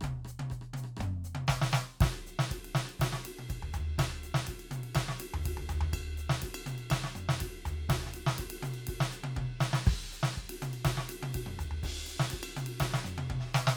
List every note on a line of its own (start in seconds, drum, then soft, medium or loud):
0.01 kick medium
0.01 cross-stick medium
0.01 hi-hat pedal medium
0.01 high tom loud
0.20 high tom soft
0.25 cross-stick medium
0.25 hi-hat pedal medium
0.40 high tom loud
0.50 kick medium
0.50 cross-stick soft
0.50 hi-hat pedal medium
0.61 cross-stick soft
0.74 hi-hat pedal medium
0.74 high tom loud
0.84 cross-stick soft
0.97 kick medium
0.97 cross-stick medium
0.97 hi-hat pedal medium
0.97 mid tom loud
1.24 hi-hat pedal loud
1.35 high tom loud
1.47 kick medium
1.47 snare loud
1.47 hi-hat pedal medium
1.62 snare loud
1.71 snare loud
1.71 hi-hat pedal medium
2.00 kick loud
2.00 snare loud
2.00 hi-hat pedal soft
2.00 ride loud
2.27 hi-hat pedal medium
2.27 ride soft
2.39 snare loud
2.51 kick medium
2.51 hi-hat pedal medium
2.51 ride loud
2.65 ride medium
2.75 snare loud
2.75 hi-hat pedal medium
2.89 ride medium
3.00 kick medium
3.00 snare loud
3.00 hi-hat pedal medium
3.00 ride loud
3.13 snare medium
3.24 hi-hat pedal medium
3.24 ride loud
3.39 high tom medium
3.49 kick medium
3.49 hi-hat pedal medium
3.49 ride bell medium
3.63 floor tom loud
3.73 floor tom loud
3.73 hi-hat pedal medium
3.99 kick medium
3.99 snare loud
3.99 hi-hat pedal medium
3.99 ride bell loud
4.24 hi-hat pedal medium
4.24 ride medium
4.35 snare loud
4.47 kick medium
4.47 hi-hat pedal medium
4.47 ride loud
4.60 ride bell medium
4.71 hi-hat pedal medium
4.71 high tom loud
4.84 ride medium
4.95 kick medium
4.95 snare loud
4.95 hi-hat pedal medium
4.95 ride bell loud
5.09 snare medium
5.19 hi-hat pedal medium
5.19 ride loud
5.34 floor tom loud
5.43 kick medium
5.43 hi-hat pedal medium
5.43 ride loud
5.57 floor tom loud
5.69 floor tom loud
5.69 hi-hat pedal loud
5.81 floor tom loud
5.93 kick medium
5.93 hi-hat pedal medium
5.93 ride bell loud
6.18 hi-hat pedal medium
6.18 ride medium
6.30 snare loud
6.42 kick medium
6.42 hi-hat pedal medium
6.42 ride loud
6.55 ride bell loud
6.66 hi-hat pedal medium
6.66 high tom loud
6.78 ride bell medium
6.90 kick medium
6.90 snare loud
6.90 hi-hat pedal medium
6.90 ride bell loud
7.04 snare medium
7.15 hi-hat pedal medium
7.15 mid tom loud
7.29 snare loud
7.40 kick medium
7.40 hi-hat pedal medium
7.40 ride loud
7.66 floor tom loud
7.66 hi-hat pedal loud
7.89 kick medium
7.89 snare loud
7.89 hi-hat pedal medium
7.89 ride loud
8.03 snare soft
8.06 snare medium
8.14 hi-hat pedal medium
8.14 ride loud
8.27 snare loud
8.38 kick medium
8.38 hi-hat pedal medium
8.38 ride loud
8.50 ride loud
8.63 hi-hat pedal medium
8.63 high tom loud
8.74 ride bell medium
8.87 kick medium
8.87 hi-hat pedal medium
8.87 ride loud
9.01 snare loud
9.12 hi-hat pedal loud
9.24 high tom loud
9.34 kick medium
9.34 hi-hat pedal soft
9.34 high tom loud
9.60 snare loud
9.60 hi-hat pedal medium
9.73 snare loud
9.85 kick loud
9.85 hi-hat pedal medium
9.85 crash loud
10.12 hi-hat pedal medium
10.23 snare loud
10.36 kick medium
10.36 hi-hat pedal medium
10.50 ride loud
10.62 hi-hat pedal loud
10.62 high tom loud
10.73 ride bell medium
10.85 kick medium
10.85 snare loud
10.85 hi-hat pedal medium
10.85 ride loud
10.97 snare medium
11.09 hi-hat pedal medium
11.09 ride loud
11.23 high tom loud
11.33 kick medium
11.33 hi-hat pedal medium
11.33 ride loud
11.46 mid tom medium
11.53 mid tom soft
11.59 floor tom loud
11.59 hi-hat pedal loud
11.71 floor tom medium
11.83 kick medium
11.83 hi-hat pedal medium
11.83 ride loud
12.07 hi-hat pedal loud
12.07 ride medium
12.20 snare loud
12.30 kick medium
12.30 hi-hat pedal medium
12.30 ride loud
12.43 ride bell loud
12.57 hi-hat pedal medium
12.57 high tom loud
12.66 ride loud
12.80 kick medium
12.80 snare loud
12.80 hi-hat pedal medium
12.80 ride loud
12.94 snare loud
13.05 hi-hat pedal medium
13.05 mid tom loud
13.18 high tom loud
13.28 kick medium
13.28 hi-hat pedal soft
13.28 high tom loud
13.40 snare medium
13.46 snare soft
13.49 kick soft
13.49 snare soft
13.54 snare loud
13.54 hi-hat pedal loud
13.67 snare loud